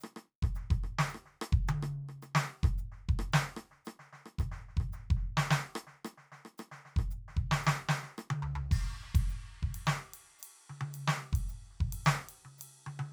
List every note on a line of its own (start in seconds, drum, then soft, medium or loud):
0.01 cross-stick medium
0.01 hi-hat pedal medium
0.16 cross-stick medium
0.43 kick medium
0.43 cross-stick soft
0.55 snare soft
0.55 hi-hat pedal medium
0.71 kick medium
0.71 cross-stick soft
0.84 cross-stick soft
0.99 snare medium
1.10 hi-hat pedal medium
1.15 cross-stick medium
1.26 snare soft
1.42 cross-stick medium
1.53 kick medium
1.68 hi-hat pedal medium
1.68 high tom loud
1.83 cross-stick medium
2.09 cross-stick soft
2.22 cross-stick soft
2.22 hi-hat pedal medium
2.35 snare loud
2.63 kick medium
2.63 cross-stick medium
2.78 hi-hat pedal medium
2.92 snare soft
3.09 kick medium
3.19 cross-stick medium
3.33 snare loud
3.33 hi-hat pedal medium
3.57 cross-stick medium
3.72 snare soft
3.85 cross-stick medium
3.85 hi-hat pedal medium
4.00 snare soft
4.13 snare soft
4.26 cross-stick soft
4.39 kick medium
4.39 cross-stick medium
4.39 hi-hat pedal medium
4.52 snare soft
4.69 snare soft
4.77 kick medium
4.77 cross-stick soft
4.93 snare soft
4.93 hi-hat pedal medium
5.11 kick medium
5.17 snare soft
5.37 snare medium
5.51 snare loud
5.51 hi-hat pedal medium
5.76 cross-stick medium
5.87 snare soft
6.05 cross-stick medium
6.05 hi-hat pedal medium
6.18 snare soft
6.32 snare soft
6.45 cross-stick soft
6.58 cross-stick medium
6.58 hi-hat pedal medium
6.72 snare soft
6.85 snare soft
6.97 kick medium
6.97 cross-stick medium
7.11 hi-hat pedal medium
7.28 snare soft
7.37 kick medium
7.52 snare medium
7.64 snare loud
7.64 hi-hat pedal medium
7.89 snare medium
8.03 snare soft
8.18 cross-stick medium
8.18 hi-hat pedal medium
8.31 high tom loud
8.43 floor tom medium
8.56 floor tom medium
8.72 kick medium
8.72 hi-hat pedal medium
8.72 crash medium
9.04 snare soft
9.15 kick medium
9.15 ride medium
9.29 hi-hat pedal medium
9.49 snare soft
9.63 kick medium
9.75 ride medium
9.86 snare medium
9.86 hi-hat pedal medium
10.14 ride medium
10.26 snare soft
10.39 hi-hat pedal medium
10.43 ride medium
10.70 high tom medium
10.81 high tom medium
10.94 hi-hat pedal medium
10.94 ride medium
11.08 snare medium
11.33 kick medium
11.33 ride medium
11.49 hi-hat pedal medium
11.71 snare soft
11.81 kick medium
11.93 ride medium
12.05 snare loud
12.05 hi-hat pedal medium
12.29 ride medium
12.45 high tom soft
12.58 hi-hat pedal medium
12.58 ride medium
12.87 high tom medium
12.99 high tom medium